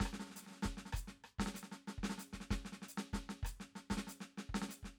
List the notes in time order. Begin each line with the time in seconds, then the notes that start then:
0.01 kick, snare
0.06 cross-stick
0.14 snare
0.20 snare
0.25 snare
0.31 snare
0.36 snare, hi-hat pedal
0.43 snare
0.47 snare
0.51 snare
0.56 snare
0.63 kick, snare
0.78 snare
0.86 snare
0.93 kick, cross-stick, hi-hat pedal
1.08 snare
1.25 cross-stick
1.39 kick, snare
1.47 snare
1.55 snare, hi-hat pedal
1.64 snare
1.72 snare
1.88 snare
1.99 kick
2.04 snare
2.10 snare
2.19 snare, hi-hat pedal
2.34 kick, snare
2.41 snare
2.51 kick, snare
2.66 snare
2.73 snare
2.83 snare
2.89 hi-hat pedal
2.98 snare
3.14 kick, snare
3.30 snare
3.44 kick, cross-stick, hi-hat pedal
3.61 snare
3.76 snare
3.91 kick, snare
3.98 snare
4.08 snare, hi-hat pedal
4.21 snare
4.38 snare
4.50 kick
4.55 snare
4.62 snare
4.70 snare, hi-hat pedal
4.84 kick, snare